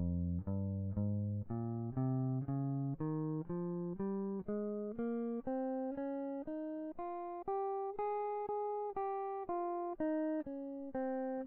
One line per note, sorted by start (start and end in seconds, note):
0.00 0.43 F2
0.50 0.97 G2
0.99 1.46 G#2
1.52 1.97 A#2
1.99 2.48 C3
2.50 2.99 C#3
3.02 3.46 D#3
3.51 3.99 F3
4.01 4.45 G3
4.50 4.99 G#3
5.00 5.44 A#3
5.48 5.98 C4
5.98 6.45 C#4
6.48 6.95 D#4
6.99 7.45 F4
7.49 7.99 G4
8.00 8.49 G#4
8.50 8.95 G#4
8.97 9.47 G4
9.50 9.96 F4
10.01 10.44 D#4
10.48 10.96 C#4
10.96 11.47 C4